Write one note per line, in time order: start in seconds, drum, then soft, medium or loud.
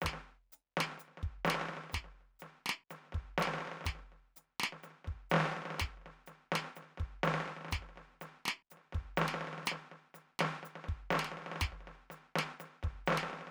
0.03 kick soft
0.03 snare medium
0.03 hi-hat pedal medium
0.07 snare medium
0.13 snare soft
0.52 hi-hat pedal medium
0.77 snare medium
0.80 snare loud
0.92 snare soft
0.98 snare soft
0.98 hi-hat pedal medium
1.08 snare soft
1.11 snare soft
1.15 snare soft
1.17 snare soft
1.23 kick soft
1.45 snare medium
1.45 hi-hat pedal medium
1.48 snare medium
1.50 snare medium
1.54 snare medium
1.60 snare soft
1.61 snare medium
1.65 snare soft
1.68 snare soft
1.73 snare soft
1.77 snare soft
1.84 snare soft
1.90 kick soft
1.90 snare soft
1.90 hi-hat pedal medium
1.94 snare medium
2.04 snare soft
2.11 snare soft
2.14 snare soft
2.21 snare soft
2.39 snare soft
2.39 hi-hat pedal medium
2.66 snare medium
2.69 snare loud
2.90 snare soft
2.90 hi-hat pedal medium
2.98 snare soft
3.05 snare soft
3.07 snare soft
3.12 kick soft
3.12 snare soft
3.22 kick soft
3.38 snare medium
3.38 hi-hat pedal medium
3.41 snare medium
3.47 snare medium
3.54 snare medium
3.58 snare soft
3.60 snare soft
3.65 snare soft
3.67 snare soft
3.71 snare soft
3.77 snare soft
3.81 snare soft
3.84 kick soft
3.84 snare soft
3.84 hi-hat pedal medium
3.86 snare medium
3.95 snare soft
3.99 snare soft
4.06 snare soft
4.12 snare soft
4.36 snare soft
4.36 hi-hat pedal medium
4.60 snare medium
4.63 snare loud
4.72 snare soft
4.83 snare soft
4.83 hi-hat pedal medium
4.90 snare soft
4.95 snare soft
4.99 snare soft
5.01 snare soft
5.04 kick soft
5.04 snare soft
5.13 kick soft
5.30 snare medium
5.30 hi-hat pedal medium
5.34 snare medium
5.36 snare medium
5.40 snare medium
5.45 snare medium
5.52 snare soft
5.56 snare soft
5.62 snare soft
5.65 snare soft
5.70 snare soft
5.74 snare soft
5.78 kick soft
5.78 snare soft
5.78 snare loud
5.78 hi-hat pedal medium
5.93 snare soft
5.97 snare soft
6.01 snare soft
6.06 snare soft
6.26 snare soft
6.26 hi-hat pedal medium
6.52 snare medium
6.55 snare loud
6.64 snare soft
6.75 snare soft
6.75 hi-hat pedal medium
6.82 snare soft
6.91 snare soft
6.97 kick soft
6.97 snare soft
7.23 snare medium
7.23 hi-hat pedal medium
7.27 snare medium
7.34 snare medium
7.40 snare medium
7.46 snare soft
7.48 snare soft
7.56 snare soft
7.61 snare soft
7.65 snare soft
7.68 kick soft
7.68 snare soft
7.68 hi-hat pedal medium
7.72 snare medium
7.78 kick soft
7.82 snare soft
7.89 snare soft
7.96 snare soft
7.97 snare soft
8.08 snare soft
8.12 snare soft
8.14 snare soft
8.21 snare soft
8.21 hi-hat pedal medium
8.45 snare medium
8.48 snare loud
8.70 snare soft
8.70 hi-hat pedal medium
8.77 snare soft
8.92 kick soft
8.92 snare soft
9.00 kick soft
9.03 kick soft
9.16 snare medium
9.16 hi-hat pedal medium
9.21 snare medium
9.28 snare medium
9.34 snare medium
9.38 snare soft
9.41 snare soft
9.44 snare soft
9.47 snare soft
9.53 snare soft
9.58 snare soft
9.63 snare soft
9.63 hi-hat pedal medium
9.67 snare loud
9.71 snare soft
9.82 snare soft
9.86 snare soft
9.88 snare soft
9.91 snare soft
10.14 snare soft
10.14 hi-hat pedal medium
10.39 snare medium
10.40 snare medium
10.45 snare medium
10.63 snare soft
10.63 hi-hat pedal medium
10.75 snare soft
10.84 snare soft
10.88 kick soft
11.10 snare medium
11.10 hi-hat pedal medium
11.13 snare medium
11.15 snare medium
11.19 snare medium
11.24 snare soft
11.32 snare soft
11.37 snare soft
11.42 snare soft
11.46 snare soft
11.51 snare soft
11.56 snare soft
11.60 kick soft
11.60 snare loud
11.60 hi-hat pedal medium
11.67 kick soft
11.70 kick soft
11.70 snare soft
11.80 snare soft
11.85 snare soft
11.87 snare soft
11.95 snare soft
12.10 snare soft
12.10 hi-hat pedal medium
12.35 snare medium
12.39 snare loud
12.60 snare soft
12.60 hi-hat pedal medium
12.65 snare soft
12.71 snare soft
12.74 snare soft
12.83 kick soft
12.83 snare soft
12.92 kick soft
13.06 snare loud
13.06 hi-hat pedal medium
13.10 snare medium
13.12 snare medium
13.17 snare medium
13.23 snare soft
13.28 snare soft
13.30 snare soft
13.33 snare soft
13.39 snare soft
13.41 snare soft
13.47 snare soft